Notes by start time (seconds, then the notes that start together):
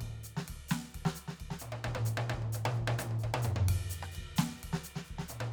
0.01 kick, ride bell
0.24 hi-hat pedal, ride
0.37 snare
0.44 hi-hat pedal
0.48 kick, ride
0.69 snare, hi-hat pedal
0.89 hi-hat pedal
0.95 kick, ride
1.05 snare
1.15 hi-hat pedal, ride
1.28 snare
1.35 hi-hat pedal
1.40 kick, ride bell
1.51 snare
1.59 hi-hat pedal, mid tom
1.72 mid tom
1.84 kick, mid tom
1.95 mid tom
2.05 hi-hat pedal, mid tom
2.17 mid tom
2.30 mid tom
2.34 kick
2.42 mid tom
2.53 hi-hat pedal, mid tom
2.66 mid tom
2.74 hi-hat pedal
2.78 kick, mid tom
2.88 mid tom
2.99 hi-hat pedal, mid tom
3.11 mid tom
3.19 hi-hat pedal
3.24 kick, mid tom
3.34 mid tom
3.42 floor tom, hi-hat pedal
3.56 floor tom
3.69 kick, ride
3.78 kick
3.90 hi-hat pedal
3.94 ride
4.03 cross-stick
4.12 hi-hat pedal, ride bell
4.18 kick
4.36 snare, hi-hat pedal
4.57 hi-hat pedal
4.63 kick, ride
4.73 snare
4.84 hi-hat pedal, ride
4.96 snare
5.05 hi-hat pedal, ride bell
5.11 kick
5.19 snare
5.28 hi-hat pedal, mid tom
5.41 mid tom